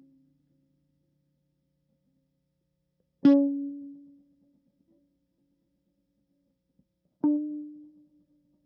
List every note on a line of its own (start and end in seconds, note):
3.25 3.74 C#4
7.25 7.42 D4